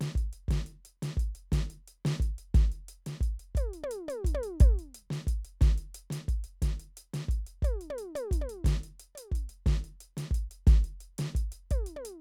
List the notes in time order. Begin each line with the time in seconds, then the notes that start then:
0.01 snare, closed hi-hat
0.15 kick, closed hi-hat
0.33 closed hi-hat
0.48 kick, snare, closed hi-hat
0.66 closed hi-hat
0.85 closed hi-hat
1.03 snare, closed hi-hat
1.17 kick, closed hi-hat
1.35 closed hi-hat
1.52 kick, snare, closed hi-hat
1.70 closed hi-hat
1.88 closed hi-hat
2.05 snare, closed hi-hat
2.20 kick, closed hi-hat
2.38 closed hi-hat
2.55 kick, snare, closed hi-hat
2.72 closed hi-hat
2.89 closed hi-hat
3.06 snare, closed hi-hat
3.21 kick, closed hi-hat
3.40 closed hi-hat
3.55 kick, closed hi-hat, high tom
3.74 closed hi-hat
3.83 high tom
3.91 closed hi-hat
4.08 closed hi-hat, high tom
4.25 kick, closed hi-hat
4.35 high tom
4.43 closed hi-hat
4.60 kick, closed hi-hat, high tom
4.79 closed hi-hat
4.95 closed hi-hat
5.11 snare, closed hi-hat
5.27 kick, closed hi-hat
5.45 closed hi-hat
5.61 kick, snare, closed hi-hat
5.78 closed hi-hat
5.95 closed hi-hat
6.10 snare, closed hi-hat
6.28 kick, closed hi-hat
6.44 closed hi-hat
6.62 kick, snare, closed hi-hat
6.80 closed hi-hat
6.97 closed hi-hat
7.14 snare, closed hi-hat
7.29 kick, closed hi-hat
7.47 closed hi-hat
7.63 kick, closed hi-hat, high tom
7.81 closed hi-hat
7.90 high tom
7.98 closed hi-hat
8.15 closed hi-hat, high tom
8.31 kick, closed hi-hat
8.41 high tom
8.49 closed hi-hat
8.65 kick, snare, closed hi-hat
8.84 closed hi-hat
9.00 closed hi-hat
9.15 closed hi-hat, high tom
9.32 kick, closed hi-hat
9.49 closed hi-hat
9.66 kick, snare, closed hi-hat
9.84 closed hi-hat
10.01 closed hi-hat
10.17 snare, closed hi-hat
10.31 kick, closed hi-hat
10.51 closed hi-hat
10.67 kick, snare, closed hi-hat
10.84 closed hi-hat
11.01 closed hi-hat
11.18 snare, closed hi-hat
11.35 kick, closed hi-hat
11.52 closed hi-hat
11.71 kick, closed hi-hat, high tom
11.87 closed hi-hat
11.96 high tom
12.05 closed hi-hat